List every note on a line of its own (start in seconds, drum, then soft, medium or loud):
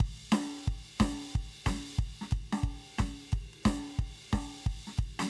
0.00 kick medium
0.00 ride loud
0.31 snare loud
0.31 hi-hat pedal soft
0.31 ride medium
0.55 ride medium
0.67 kick medium
0.67 ride medium
0.98 kick medium
0.98 snare loud
0.98 hi-hat pedal medium
0.98 ride loud
1.23 ride medium
1.34 kick medium
1.34 ride medium
1.65 kick medium
1.65 snare loud
1.65 hi-hat pedal medium
1.65 ride loud
1.88 ride soft
1.98 kick medium
1.98 ride medium
2.21 snare medium
2.31 kick medium
2.31 hi-hat pedal medium
2.31 ride medium
2.53 snare loud
2.53 ride medium
2.63 kick medium
2.63 ride medium
2.98 kick medium
2.98 snare loud
2.98 hi-hat pedal medium
2.98 ride medium
3.21 ride soft
3.32 kick medium
3.32 ride loud
3.53 ride medium
3.63 kick medium
3.63 snare loud
3.63 hi-hat pedal medium
3.63 ride medium
3.88 ride soft
3.99 kick medium
3.99 ride medium
4.22 ride soft
4.30 kick medium
4.30 snare loud
4.30 hi-hat pedal soft
4.30 ride loud
4.54 ride medium
4.66 kick medium
4.66 ride medium
4.87 snare soft
4.97 kick medium
4.97 hi-hat pedal medium
4.97 ride medium
5.19 snare loud
5.19 ride loud